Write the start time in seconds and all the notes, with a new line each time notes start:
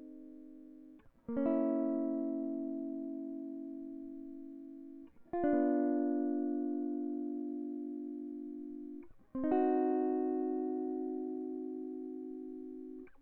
1.29 A#3
1.37 C#4
1.46 E4
5.34 F4
5.44 D4
5.54 B3
9.36 C4
9.44 D#4
9.52 F#4